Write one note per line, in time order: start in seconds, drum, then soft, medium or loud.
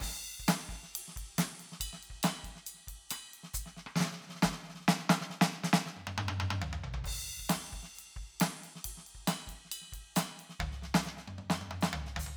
0.01 kick soft
0.01 hi-hat pedal medium
0.01 crash medium
0.08 kick soft
0.12 kick soft
0.40 kick soft
0.45 kick soft
0.45 snare loud
0.45 ride loud
0.51 hi-hat pedal medium
0.69 kick soft
0.69 ride soft
0.83 snare soft
0.94 hi-hat pedal soft
0.94 ride loud
1.08 snare soft
1.17 kick soft
1.17 ride medium
1.23 kick soft
1.39 snare loud
1.39 hi-hat pedal medium
1.39 ride loud
1.60 ride soft
1.72 snare soft
1.81 kick soft
1.81 hi-hat pedal soft
1.81 ride bell loud
1.87 kick soft
1.93 snare soft
2.03 ride soft
2.10 kick soft
2.16 kick soft
2.24 snare loud
2.24 hi-hat pedal medium
2.24 ride bell loud
2.44 kick soft
2.44 ride soft
2.50 kick soft
2.56 snare soft
2.66 hi-hat pedal medium
2.66 ride bell medium
2.75 snare soft
2.79 snare soft
2.82 snare soft
2.88 kick soft
2.88 ride medium
3.10 cross-stick medium
3.10 hi-hat pedal medium
3.10 ride bell loud
3.34 ride medium
3.44 snare soft
3.54 kick medium
3.54 hi-hat pedal loud
3.54 ride bell medium
3.61 kick soft
3.66 snare soft
3.77 snare soft
3.87 cross-stick medium
3.96 snare loud
4.01 snare loud
4.06 snare medium
4.12 snare medium
4.17 snare soft
4.21 snare soft
4.27 snare soft
4.30 snare medium
4.35 snare soft
4.43 kick soft
4.43 snare loud
4.52 snare medium
4.57 snare soft
4.63 snare soft
4.69 snare soft
4.75 snare soft
4.81 snare soft
4.85 kick soft
4.85 snare soft
4.89 snare loud
4.99 snare soft
5.10 snare loud
5.21 snare medium
5.30 snare medium
5.42 snare loud
5.52 snare soft
5.64 snare loud
5.73 snare loud
5.86 snare medium
5.97 high tom medium
6.07 high tom loud
6.18 high tom loud
6.29 high tom loud
6.40 high tom loud
6.51 high tom loud
6.62 mid tom loud
6.73 mid tom medium
6.84 floor tom loud
6.94 floor tom loud
7.05 kick medium
7.05 hi-hat pedal soft
7.05 crash loud
7.05 floor tom soft
7.18 kick soft
7.40 kick soft
7.44 kick soft
7.50 snare loud
7.50 hi-hat pedal medium
7.50 ride loud
7.73 kick soft
7.73 ride soft
7.79 kick soft
7.83 snare soft
7.95 hi-hat pedal soft
7.95 ride medium
8.17 kick soft
8.23 kick soft
8.41 snare loud
8.41 hi-hat pedal soft
8.41 ride loud
8.64 ride soft
8.76 snare soft
8.85 kick soft
8.85 hi-hat pedal soft
8.85 ride loud
8.98 snare soft
9.07 ride soft
9.15 kick soft
9.28 snare medium
9.28 hi-hat pedal soft
9.28 ride bell loud
9.48 kick soft
9.48 ride medium
9.53 kick soft
9.65 snare soft
9.72 hi-hat pedal medium
9.72 ride bell loud
9.82 snare soft
9.88 snare soft
9.93 kick soft
9.93 ride medium
9.98 kick soft
10.16 snare loud
10.16 hi-hat pedal loud
10.16 ride bell loud
10.25 snare soft
10.40 ride soft
10.50 snare soft
10.60 kick medium
10.60 mid tom loud
10.67 kick soft
10.72 snare soft
10.83 snare soft
10.95 snare loud
11.03 snare medium
11.03 hi-hat pedal soft
11.18 snare soft
11.28 high tom medium
11.39 high tom medium
11.50 snare loud
11.55 hi-hat pedal soft
11.61 high tom medium
11.71 high tom medium
11.81 snare loud
11.81 hi-hat pedal medium
11.93 mid tom loud
12.06 snare soft
12.16 kick soft
12.16 hi-hat pedal medium
12.16 mid tom loud